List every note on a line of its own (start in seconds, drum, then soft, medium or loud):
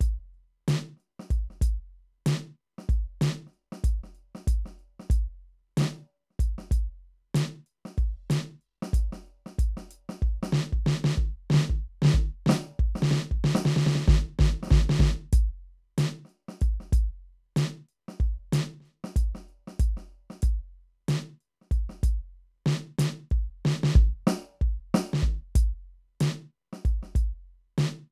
0.01 closed hi-hat medium
0.01 kick medium
0.35 closed hi-hat soft
0.68 closed hi-hat medium
0.68 snare loud
0.97 snare soft
0.97 closed hi-hat soft
1.20 snare soft
1.31 closed hi-hat medium
1.31 kick medium
1.51 snare soft
1.62 closed hi-hat loud
1.62 kick medium
2.27 closed hi-hat loud
2.27 snare loud
2.79 snare soft
2.89 closed hi-hat soft
2.89 kick medium
3.22 closed hi-hat medium
3.22 snare loud
3.47 snare soft
3.54 closed hi-hat soft
3.73 snare soft
3.84 closed hi-hat medium
3.84 kick medium
4.04 snare soft
4.15 closed hi-hat soft
4.35 snare soft
4.48 closed hi-hat medium
4.48 kick medium
4.66 snare soft
4.79 closed hi-hat soft
5.00 snare soft
5.10 closed hi-hat medium
5.10 kick medium
5.78 closed hi-hat medium
5.78 snare loud
5.82 snare medium
6.31 snare soft
6.40 closed hi-hat medium
6.40 kick medium
6.59 snare soft
6.72 closed hi-hat medium
6.72 kick medium
7.35 closed hi-hat loud
7.35 snare loud
7.67 closed hi-hat soft
7.86 snare soft
7.98 kick medium
7.98 closed hi-hat soft
8.02 crash soft
8.30 closed hi-hat loud
8.30 snare loud
8.61 closed hi-hat soft
8.83 snare medium
8.94 closed hi-hat medium
8.94 kick medium
9.13 snare soft
9.27 closed hi-hat soft
9.47 snare soft
9.59 closed hi-hat medium
9.59 kick medium
9.77 snare soft
9.91 closed hi-hat medium
10.10 snare medium
10.22 kick medium
10.43 snare medium
10.53 snare loud
10.73 kick medium
10.87 snare loud
11.05 snare loud
11.18 kick medium
11.51 snare loud
11.55 snare loud
11.70 kick medium
12.02 snare loud
12.05 snare loud
12.14 kick medium
12.47 snare loud
12.50 snare loud
12.80 kick medium
12.96 snare medium
13.03 snare loud
13.12 snare loud
13.32 kick medium
13.45 snare loud
13.55 snare loud
13.66 snare loud
13.77 snare loud
13.87 snare loud
13.96 snare loud
14.05 kick soft
14.05 snare loud
14.08 kick loud
14.39 kick medium
14.39 snare loud
14.63 snare medium
14.68 snare soft
14.71 kick loud
14.71 snare loud
14.90 snare loud
15.00 kick medium
15.00 snare loud
15.33 closed hi-hat loud
15.33 kick medium
15.98 closed hi-hat loud
15.98 snare loud
16.25 snare soft
16.30 closed hi-hat soft
16.49 snare soft
16.61 closed hi-hat medium
16.61 kick medium
16.81 snare soft
16.93 closed hi-hat medium
16.93 kick medium
17.57 closed hi-hat medium
17.57 snare loud
17.89 closed hi-hat soft
18.09 snare soft
18.20 kick medium
18.20 closed hi-hat soft
18.53 closed hi-hat loud
18.53 snare loud
18.81 snare soft
18.86 closed hi-hat soft
19.05 snare medium
19.16 closed hi-hat medium
19.16 kick medium
19.35 snare soft
19.49 closed hi-hat soft
19.68 snare soft
19.80 closed hi-hat medium
19.80 kick medium
19.97 snare soft
20.03 snare soft
20.10 closed hi-hat soft
20.31 snare soft
20.43 closed hi-hat medium
20.43 kick medium
21.09 closed hi-hat medium
21.09 snare loud
21.41 closed hi-hat soft
21.62 snare soft
21.72 closed hi-hat soft
21.72 kick medium
21.90 snare soft
22.04 closed hi-hat medium
22.04 kick medium
22.66 snare loud
22.99 closed hi-hat loud
22.99 snare loud
23.31 kick medium
23.31 hi-hat pedal soft
23.66 snare loud
23.84 snare loud
23.96 kick loud
24.28 snare loud
24.62 kick medium
24.95 snare loud
25.14 snare loud
25.23 kick medium
25.56 closed hi-hat loud
25.56 kick medium
26.21 closed hi-hat loud
26.21 snare loud
26.73 snare soft
26.85 kick medium
26.85 closed hi-hat soft
27.03 snare soft
27.16 closed hi-hat medium
27.16 kick medium
27.78 closed hi-hat medium
27.78 snare loud